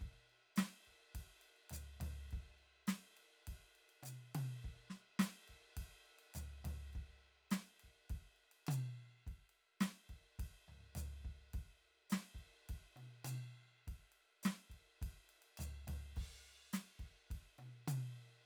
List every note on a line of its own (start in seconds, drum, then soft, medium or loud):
0.01 kick soft
0.01 ride soft
0.30 ride soft
0.56 snare medium
0.56 hi-hat pedal medium
0.56 ride medium
0.85 kick soft
0.85 ride soft
1.15 kick soft
1.15 ride medium
1.42 ride soft
1.57 ride soft
1.70 floor tom soft
1.70 hi-hat pedal medium
1.70 ride medium
2.00 floor tom medium
2.00 ride medium
2.31 kick soft
2.31 ride soft
2.59 ride soft
2.87 snare medium
2.87 hi-hat pedal medium
2.87 ride medium
3.17 ride soft
3.47 kick soft
3.47 ride medium
3.75 ride soft
3.89 ride soft
4.03 hi-hat pedal medium
4.03 high tom soft
4.03 ride soft
4.35 high tom medium
4.35 ride medium
4.63 kick soft
4.63 ride soft
4.90 snare soft
4.90 ride soft
5.19 snare medium
5.19 hi-hat pedal medium
5.19 ride medium
5.48 kick soft
5.48 ride soft
5.77 kick soft
5.77 ride medium
6.06 ride soft
6.19 ride soft
6.34 floor tom soft
6.34 hi-hat pedal medium
6.34 ride soft
6.65 floor tom medium
6.65 ride medium
6.93 kick soft
6.93 ride soft
7.51 snare medium
7.51 hi-hat pedal medium
7.51 ride medium
7.80 kick soft
7.80 ride soft
8.10 kick soft
8.10 ride soft
8.36 ride soft
8.52 ride soft
8.67 hi-hat pedal medium
8.67 high tom medium
8.67 ride bell medium
9.27 kick soft
9.27 ride soft
9.50 ride soft
9.81 snare medium
9.81 hi-hat pedal medium
9.81 ride medium
10.09 kick soft
10.09 ride soft
10.39 kick soft
10.39 ride medium
10.68 floor tom soft
10.95 floor tom medium
10.95 hi-hat pedal medium
10.95 ride medium
11.25 kick soft
11.54 kick soft
11.54 ride soft
12.10 snare medium
12.10 hi-hat pedal medium
12.10 ride medium
12.35 kick soft
12.35 ride soft
12.69 kick soft
12.69 ride soft
12.96 high tom soft
12.96 ride soft
13.25 hi-hat pedal medium
13.25 high tom medium
13.25 ride bell medium
13.87 kick soft
13.87 ride soft
14.12 ride soft
14.43 snare medium
14.43 hi-hat pedal medium
14.43 ride medium
14.70 kick soft
14.70 ride soft
15.02 kick soft
15.02 ride medium
15.29 ride soft
15.42 ride soft
15.58 floor tom medium
15.58 hi-hat pedal medium
15.58 ride bell medium
15.87 floor tom medium
15.87 ride medium
16.16 kick soft
16.16 crash soft
16.73 snare medium
16.73 hi-hat pedal medium
16.73 ride medium
16.99 kick soft
16.99 ride soft
17.31 kick soft
17.31 ride soft
17.58 high tom soft
17.58 ride soft
17.88 hi-hat pedal medium
17.88 high tom medium
17.88 ride medium